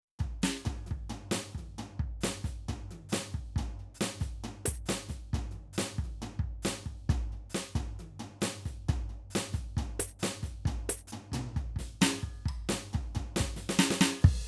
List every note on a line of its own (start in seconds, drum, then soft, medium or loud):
0.19 kick medium
0.19 floor tom medium
0.42 snare loud
0.42 hi-hat pedal medium
0.65 kick medium
0.65 floor tom loud
0.86 high tom medium
0.91 kick medium
1.09 floor tom loud
1.15 kick soft
1.31 snare loud
1.31 floor tom loud
1.31 hi-hat pedal medium
1.55 kick soft
1.55 high tom medium
1.78 floor tom loud
1.99 kick medium
2.21 snare loud
2.21 floor tom loud
2.21 hi-hat pedal medium
2.44 kick medium
2.44 snare soft
2.68 kick medium
2.68 floor tom loud
2.91 high tom medium
3.09 snare loud
3.09 floor tom loud
3.09 hi-hat pedal medium
3.34 kick medium
3.56 kick medium
3.56 floor tom loud
3.79 floor tom soft
3.94 hi-hat pedal medium
4.01 snare loud
4.01 floor tom loud
4.20 kick medium
4.20 snare medium
4.44 floor tom loud
4.65 kick medium
4.65 high tom loud
4.86 snare loud
4.86 floor tom loud
4.86 hi-hat pedal medium
5.09 kick medium
5.09 snare soft
5.33 kick medium
5.33 floor tom loud
5.51 high tom medium
5.73 hi-hat pedal loud
5.78 snare loud
5.78 floor tom loud
5.98 kick medium
6.04 high tom medium
6.22 floor tom loud
6.39 kick medium
6.62 snare loud
6.62 floor tom loud
6.62 hi-hat pedal medium
6.86 kick soft
7.09 kick loud
7.09 floor tom loud
7.32 floor tom soft
7.50 hi-hat pedal medium
7.54 snare loud
7.75 kick medium
7.75 floor tom loud
7.99 high tom medium
8.19 floor tom loud
8.41 snare loud
8.41 floor tom loud
8.41 hi-hat pedal medium
8.65 kick medium
8.65 snare soft
8.88 kick medium
8.88 floor tom loud
9.09 floor tom soft
9.30 hi-hat pedal medium
9.35 snare loud
9.35 floor tom loud
9.53 kick medium
9.53 snare soft
9.77 kick medium
9.77 floor tom loud
9.99 high tom loud
10.19 snare loud
10.19 floor tom loud
10.19 hi-hat pedal medium
10.43 kick medium
10.43 snare soft
10.65 kick medium
10.65 floor tom loud
10.78 kick soft
10.89 high tom loud
11.07 hi-hat pedal loud
11.12 floor tom loud
11.32 kick soft
11.32 floor tom loud
11.32 mid tom loud
11.56 kick medium
11.56 floor tom medium
11.76 kick medium
11.76 snare medium
12.01 snare loud
12.01 floor tom loud
12.01 hi-hat pedal loud
12.23 kick medium
12.46 kick medium
12.46 floor tom medium
12.69 snare loud
12.69 floor tom loud
12.93 kick medium
12.93 floor tom loud
13.15 kick medium
13.15 floor tom loud
13.36 kick medium
13.36 snare loud
13.36 floor tom loud
13.36 hi-hat pedal medium
13.56 snare medium
13.69 snare loud
13.79 snare loud
13.90 snare loud
14.01 snare loud
14.22 kick loud
14.22 crash loud